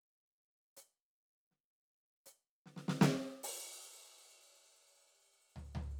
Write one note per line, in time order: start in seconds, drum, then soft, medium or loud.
0.77 hi-hat pedal soft
1.51 snare soft
2.26 hi-hat pedal soft
2.66 snare soft
2.76 snare soft
2.88 snare medium
3.01 snare loud
3.43 open hi-hat loud
5.56 floor tom soft
5.75 floor tom medium